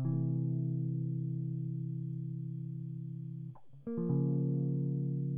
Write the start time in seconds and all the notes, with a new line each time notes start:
0.00 C3
0.06 E3
3.87 A#3
3.98 F3
4.10 C#3